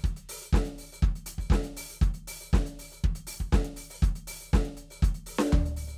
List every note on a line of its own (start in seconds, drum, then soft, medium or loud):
0.01 kick loud
0.01 hi-hat pedal soft
0.05 closed hi-hat medium
0.17 closed hi-hat medium
0.29 open hi-hat loud
0.41 open hi-hat medium
0.41 hi-hat pedal soft
0.53 kick loud
0.53 snare loud
0.65 closed hi-hat soft
0.78 open hi-hat medium
0.93 open hi-hat medium
0.97 hi-hat pedal soft
1.03 kick loud
1.03 closed hi-hat soft
1.16 closed hi-hat soft
1.26 open hi-hat loud
1.38 open hi-hat medium
1.38 kick medium
1.49 kick loud
1.49 snare loud
1.49 hi-hat pedal soft
1.64 closed hi-hat medium
1.77 open hi-hat loud
1.89 open hi-hat medium
1.96 hi-hat pedal soft
2.02 closed hi-hat medium
2.02 kick loud
2.14 closed hi-hat soft
2.28 open hi-hat loud
2.41 open hi-hat medium
2.49 hi-hat pedal soft
2.53 kick loud
2.53 snare loud
2.66 closed hi-hat medium
2.79 open hi-hat loud
2.92 open hi-hat medium
2.98 hi-hat pedal soft
3.04 kick loud
3.04 closed hi-hat medium
3.15 closed hi-hat medium
3.27 open hi-hat loud
3.40 kick medium
3.40 open hi-hat soft
3.53 kick loud
3.53 snare loud
3.53 hi-hat pedal soft
3.65 closed hi-hat medium
3.77 open hi-hat loud
3.90 open hi-hat loud
3.98 hi-hat pedal soft
4.03 closed hi-hat medium
4.03 kick loud
4.16 closed hi-hat medium
4.28 open hi-hat loud
4.40 open hi-hat medium
4.49 hi-hat pedal soft
4.54 kick loud
4.54 snare loud
4.65 closed hi-hat medium
4.77 closed hi-hat medium
4.91 open hi-hat medium
4.98 hi-hat pedal soft
5.03 closed hi-hat medium
5.03 kick loud
5.15 closed hi-hat soft
5.27 open hi-hat loud
5.39 snare loud
5.48 hi-hat pedal soft
5.53 kick loud
5.53 floor tom loud
5.66 closed hi-hat medium
5.77 open hi-hat medium
5.87 open hi-hat medium